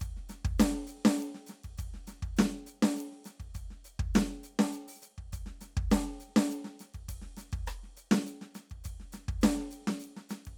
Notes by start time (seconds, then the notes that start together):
0.01 kick, hi-hat pedal, ride
0.17 snare
0.30 snare, hi-hat pedal, ride
0.45 kick, ride
0.59 snare, hi-hat pedal, ride
0.71 snare
0.75 snare
0.88 hi-hat pedal, ride
1.06 snare
1.19 hi-hat pedal
1.23 ride
1.35 snare
1.47 snare, hi-hat pedal, ride
1.64 kick, ride
1.78 kick, hi-hat pedal, ride
1.94 snare
2.08 snare, hi-hat pedal, ride
2.23 kick, ride
2.37 snare, hi-hat pedal
2.51 snare
2.67 hi-hat pedal, ride
2.83 snare
2.97 hi-hat pedal
3.01 ride
3.12 snare
3.25 snare, hi-hat pedal, ride
3.40 kick, ride
3.55 kick, hi-hat pedal, ride
3.71 snare
3.85 hi-hat pedal, ride
4.00 kick, ride
4.15 snare, hi-hat pedal, ride
4.29 snare
4.44 hi-hat pedal
4.60 snare
4.73 hi-hat pedal
4.88 open hi-hat
5.03 hi-hat pedal, ride
5.18 kick
5.33 kick, hi-hat pedal, ride
5.47 snare
5.61 snare, hi-hat pedal, ride
5.77 kick, ride
5.91 snare, hi-hat pedal, ride
6.02 cross-stick
6.07 cross-stick
6.20 hi-hat pedal
6.37 snare
6.50 hi-hat pedal, ride
6.65 snare
6.80 snare, hi-hat pedal, ride
6.95 kick, ride
7.09 kick, hi-hat pedal, ride
7.22 snare
7.37 snare, hi-hat pedal, ride
7.53 kick, ride
7.67 cross-stick, hi-hat pedal, ride
7.84 snare
7.97 hi-hat pedal, ride
8.12 snare
8.27 hi-hat pedal, ride
8.42 snare
8.55 snare, hi-hat pedal, ride
8.71 kick, ride
8.85 kick, hi-hat pedal, ride
9.00 snare
9.13 snare, hi-hat pedal, ride
9.29 kick, ride
9.42 snare, hi-hat pedal, ride
9.59 snare
9.71 hi-hat pedal, ride
9.88 snare
10.00 hi-hat pedal
10.05 ride
10.17 snare
10.30 snare, hi-hat pedal, ride
10.46 kick, ride